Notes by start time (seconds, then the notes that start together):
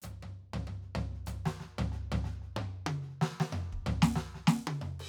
0.01 hi-hat pedal, floor tom
0.22 floor tom
0.53 floor tom
0.67 floor tom
0.81 snare
0.95 floor tom
1.14 snare
1.26 hi-hat pedal, floor tom
1.45 snare
1.60 snare
1.78 floor tom
1.92 snare
2.12 floor tom
2.24 snare
2.42 snare
2.56 mid tom
2.86 high tom
3.02 snare
3.08 snare
3.21 snare
3.40 snare
3.52 floor tom
3.72 kick
3.86 floor tom
4.02 snare
4.15 snare
4.34 snare
4.47 snare
4.67 high tom
4.81 floor tom
4.99 crash